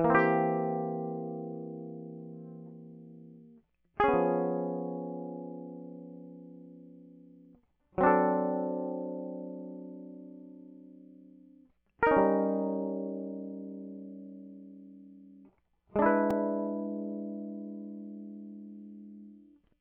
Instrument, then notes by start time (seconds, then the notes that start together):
electric guitar
0.00 E3
0.05 A#3
0.10 C4
0.15 G4
4.00 G#4
4.04 C#4
4.09 B3
4.14 F3
7.99 F#3 C4
8.04 D4 A4
12.03 A#4
12.07 D#4
12.11 C#4
12.17 G3
15.96 G#3 D4
16.02 E4 B4